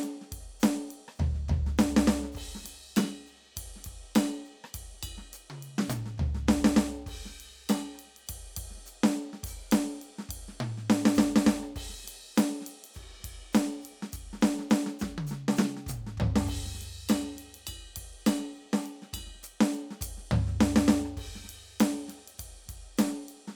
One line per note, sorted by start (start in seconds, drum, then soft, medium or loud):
0.01 hi-hat pedal soft
0.01 ride medium
0.21 snare soft
0.32 kick soft
0.32 ride medium
0.38 kick soft
0.41 kick soft
0.60 snare loud
0.60 hi-hat pedal medium
0.60 ride loud
0.87 hi-hat pedal soft
0.87 ride medium
1.08 cross-stick medium
1.15 hi-hat pedal soft
1.19 kick soft
1.19 floor tom loud
1.25 kick soft
1.34 snare soft
1.48 kick medium
1.48 floor tom loud
1.56 kick soft
1.66 snare soft
1.78 snare loud
1.78 hi-hat pedal loud
1.96 snare loud
2.04 snare loud
2.04 hi-hat pedal soft
2.23 snare soft
2.32 kick medium
2.32 hi-hat pedal soft
2.36 crash medium
2.41 kick soft
2.55 snare soft
2.64 snare soft
2.64 ride medium
2.96 snare loud
2.96 hi-hat pedal medium
2.96 ride bell loud
3.05 snare soft
3.26 hi-hat pedal soft
3.26 ride soft
3.43 ride soft
3.56 kick soft
3.56 hi-hat pedal medium
3.56 ride loud
3.62 kick soft
3.66 kick soft
3.76 snare soft
3.80 snare soft
3.84 kick soft
3.84 snare soft
3.84 ride medium
3.95 kick soft
4.15 snare loud
4.15 hi-hat pedal medium
4.15 ride bell loud
4.23 snare soft
4.45 hi-hat pedal soft
4.45 ride soft
4.64 cross-stick medium
4.74 kick soft
4.74 hi-hat pedal medium
4.74 ride loud
4.80 kick soft
4.83 kick soft
4.93 snare soft
5.03 kick soft
5.03 ride bell loud
5.10 kick soft
5.13 kick soft
5.18 snare soft
5.33 hi-hat pedal medium
5.33 ride medium
5.50 high tom medium
5.62 ride medium
5.78 snare loud
5.88 kick soft
5.88 hi-hat pedal loud
5.88 mid tom loud
6.06 snare soft
6.18 kick soft
6.18 floor tom loud
6.23 kick soft
6.34 snare soft
6.48 kick soft
6.48 snare loud
6.64 snare loud
6.76 snare loud
7.06 kick medium
7.06 crash medium
7.13 kick soft
7.17 kick soft
7.25 snare soft
7.30 cross-stick soft
7.40 ride medium
7.69 snare loud
7.69 hi-hat pedal medium
7.69 ride bell loud
7.77 snare soft
7.95 cross-stick soft
7.99 cross-stick soft
7.99 ride medium
8.16 ride soft
8.26 kick soft
8.26 hi-hat pedal soft
8.26 ride loud
8.36 kick soft
8.56 kick medium
8.56 ride loud
8.64 kick soft
8.67 kick soft
8.67 snare soft
8.77 snare soft
8.86 hi-hat pedal medium
8.86 ride medium
9.03 snare loud
9.10 snare soft
9.10 hi-hat pedal soft
9.16 ride soft
9.33 snare soft
9.43 kick medium
9.43 hi-hat pedal medium
9.43 ride loud
9.50 kick soft
9.55 kick soft
9.71 snare loud
9.71 ride loud
9.78 cross-stick soft
10.01 ride medium
10.18 snare medium
10.29 kick soft
10.29 ride loud
10.35 kick soft
10.39 kick soft
10.48 snare soft
10.60 mid tom loud
10.77 snare soft
10.90 snare loud
11.05 snare loud
11.14 kick soft
11.14 snare loud
11.14 hi-hat pedal loud
11.36 snare loud
11.46 kick soft
11.46 snare loud
11.63 cross-stick medium
11.76 kick medium
11.76 crash loud
11.83 kick soft
11.87 kick soft
11.87 snare soft
12.04 snare soft
12.08 snare soft
12.08 ride loud
12.36 snare loud
12.36 hi-hat pedal medium
12.36 ride loud
12.44 cross-stick soft
12.61 snare soft
12.61 hi-hat pedal soft
12.66 snare soft
12.66 ride medium
12.84 ride medium
12.94 kick soft
12.94 hi-hat pedal soft
12.94 ride medium
13.20 snare soft
13.24 kick soft
13.24 ride medium
13.30 kick soft
13.34 kick soft
13.53 snare loud
13.53 hi-hat pedal medium
13.53 ride medium
13.64 snare soft
13.81 kick soft
13.81 hi-hat pedal soft
13.81 ride medium
14.02 snare medium
14.12 kick medium
14.12 hi-hat pedal medium
14.12 ride medium
14.19 kick soft
14.33 snare soft
14.41 snare loud
14.41 hi-hat pedal medium
14.59 snare soft
14.70 snare loud
14.70 hi-hat pedal medium
14.86 snare medium
14.99 kick soft
14.99 snare medium
14.99 hi-hat pedal medium
15.08 kick soft
15.11 kick soft
15.18 high tom loud
15.27 hi-hat pedal medium
15.31 snare medium
15.48 snare loud
15.56 snare loud
15.56 hi-hat pedal medium
15.77 snare soft
15.86 kick medium
15.86 hi-hat pedal loud
15.86 mid tom loud
15.96 kick soft
16.06 snare soft
16.17 kick soft
16.17 floor tom loud
16.24 kick soft
16.36 snare loud
16.46 kick medium
16.46 crash loud
16.55 kick soft
16.65 snare soft
16.74 snare soft
16.81 snare soft
16.81 ride medium
17.08 snare loud
17.08 hi-hat pedal medium
17.08 ride bell loud
17.34 snare soft
17.34 ride medium
17.43 snare soft
17.49 snare soft
17.54 snare soft
17.54 ride medium
17.65 kick soft
17.65 hi-hat pedal soft
17.65 ride bell loud
17.96 kick soft
17.96 ride loud
18.26 snare loud
18.26 hi-hat pedal medium
18.26 ride bell loud
18.39 snare soft
18.53 hi-hat pedal soft
18.53 ride soft
18.73 snare loud
18.82 hi-hat pedal medium
18.86 ride medium
19.02 snare soft
19.13 kick soft
19.13 snare soft
19.13 ride bell loud
19.20 kick soft
19.23 kick soft
19.23 snare soft
19.34 snare soft
19.43 hi-hat pedal loud
19.43 ride medium
19.60 snare loud
19.68 hi-hat pedal soft
19.74 ride soft
19.90 snare soft
20.01 kick medium
20.01 hi-hat pedal loud
20.01 ride loud
20.17 snare soft
20.31 floor tom loud
20.47 snare soft
20.60 snare loud
20.76 snare loud
20.88 snare loud
21.05 cross-stick soft
21.17 kick soft
21.17 crash medium
21.23 kick soft
21.26 kick soft
21.35 snare soft
21.44 snare soft
21.49 ride medium
21.79 snare loud
21.79 hi-hat pedal soft
21.79 ride loud
22.08 snare soft
22.08 ride medium
22.18 cross-stick soft
22.28 ride medium
22.38 kick soft
22.38 hi-hat pedal medium
22.38 ride loud
22.65 kick soft
22.65 snare soft
22.65 ride medium
22.77 kick soft
22.98 snare loud
22.98 hi-hat pedal medium
22.98 ride loud
23.06 snare soft
23.28 ride medium
23.47 snare soft